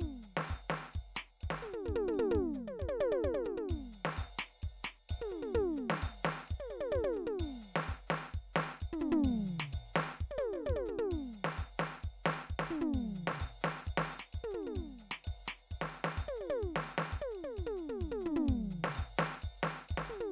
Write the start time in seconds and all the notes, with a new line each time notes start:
0.01 kick, ride bell
0.23 hi-hat pedal
0.37 snare
0.49 kick, ride bell
0.55 ride
0.69 snare, hi-hat pedal
0.94 kick, ride bell
1.15 snare, hi-hat pedal
1.41 kick, ride bell
1.51 snare
1.62 hi-hat pedal, mid tom
1.74 mid tom
1.86 kick, mid tom
1.96 mid tom
2.08 hi-hat pedal, mid tom
2.14 ride
2.19 mid tom
2.31 mid tom
2.35 kick
2.42 kick
2.54 hi-hat pedal, high tom
2.68 high tom
2.79 kick, high tom
2.89 kick, high tom
3.00 hi-hat pedal, high tom
3.12 high tom
3.21 kick, hi-hat pedal, high tom
3.34 high tom
3.45 hi-hat pedal, mid tom
3.57 mid tom
3.69 kick, ride bell
3.78 kick
3.92 hi-hat pedal, ride
4.05 snare
4.17 kick, ride bell
4.24 kick
4.38 snare, hi-hat pedal
4.62 kick, ride bell
4.83 snare, hi-hat pedal
5.10 kick, ride
5.19 kick, mid tom
5.30 hi-hat pedal
5.42 mid tom
5.55 kick, mid tom
5.61 kick
5.76 hi-hat pedal, mid tom
5.90 snare
5.99 hi-hat pedal, ride bell
6.03 kick
6.23 snare, hi-hat pedal
6.48 kick, ride
6.60 high tom
6.70 hi-hat pedal, high tom
6.81 high tom
6.92 kick, high tom
7.04 high tom
7.13 hi-hat pedal, mid tom
7.27 mid tom
7.40 kick, ride bell
7.62 hi-hat pedal, ride
7.76 snare
7.83 hi-hat pedal
7.88 kick, ride bell
8.07 snare, hi-hat pedal
8.29 hi-hat pedal
8.34 kick, ride bell
8.53 snare, hi-hat pedal
8.81 kick, ride
8.93 floor tom
8.99 hi-hat pedal, floor tom
9.12 floor tom
9.24 kick, ride
9.30 kick
9.47 hi-hat pedal, ride
9.60 snare
9.73 kick, ride
9.94 snare, hi-hat pedal
10.21 kick
10.31 high tom
10.38 hi-hat pedal, high tom
10.53 high tom
10.56 high tom
10.66 kick, high tom
10.76 kick, high tom
10.86 hi-hat pedal, mid tom
10.99 mid tom
11.12 kick, ride bell
11.33 hi-hat pedal, ride
11.45 snare
11.54 hi-hat pedal, ride bell
11.59 kick
11.78 snare, hi-hat pedal
11.99 hi-hat pedal
12.04 kick, ride bell
12.24 snare, hi-hat pedal
12.50 kick, ride bell
12.60 snare
12.69 floor tom, hi-hat pedal
12.81 floor tom
12.94 kick, ride
13.15 hi-hat pedal, ride
13.28 snare
13.35 hi-hat pedal
13.40 kick, ride
13.61 snare, hi-hat pedal
13.82 hi-hat pedal
13.87 kick, ride
13.98 snare
14.06 hi-hat pedal
14.11 ride
14.20 snare
14.33 kick, ride
14.42 kick, mid tom
14.51 hi-hat pedal, mid tom
14.63 mid tom, ride
14.76 kick, ride bell
14.99 hi-hat pedal, ride
15.12 snare
15.25 kick, ride
15.46 snare, hi-hat pedal
15.66 hi-hat pedal
15.72 kick, ride
15.82 snare
15.92 hi-hat pedal, ride
16.05 snare
16.18 kick, ride
16.25 kick, high tom
16.36 hi-hat pedal
16.41 high tom
16.50 high tom
16.63 kick, ride
16.76 snare
16.85 hi-hat pedal, ride
16.98 snare
17.12 kick, ride
17.21 kick, high tom
17.31 hi-hat pedal
17.35 ride
17.44 high tom
17.52 hi-hat pedal
17.57 kick, ride
17.67 mid tom
17.77 hi-hat pedal, ride
17.89 mid tom
18.02 kick, ride
18.12 mid tom
18.21 hi-hat pedal
18.26 floor tom
18.36 floor tom
18.45 kick, floor tom, ride bell
18.57 kick
18.71 hi-hat pedal, ride
18.85 snare
18.92 hi-hat pedal, ride
18.99 kick
19.17 snare, hi-hat pedal
19.37 hi-hat pedal
19.42 kick, ride
19.63 snare, hi-hat pedal
19.89 kick, ride
19.98 snare
20.07 hi-hat pedal, mid tom
20.21 mid tom